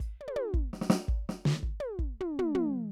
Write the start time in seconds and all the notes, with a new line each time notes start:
0.01 kick, hi-hat pedal
0.21 high tom
0.28 high tom
0.37 high tom
0.55 kick
0.74 snare
0.82 snare
0.91 snare
1.09 kick
1.30 snare
1.46 snare
1.64 kick
1.81 closed hi-hat, high tom
2.00 kick
2.21 floor tom
2.39 floor tom
2.55 floor tom